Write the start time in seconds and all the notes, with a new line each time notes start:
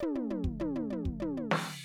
0.00 floor tom, hi-hat pedal, high tom
0.15 floor tom, high tom
0.31 floor tom, high tom
0.45 kick
0.60 floor tom, high tom
0.76 floor tom, high tom
0.91 floor tom, high tom
1.06 kick
1.20 floor tom, high tom
1.37 floor tom, high tom
1.51 snare, crash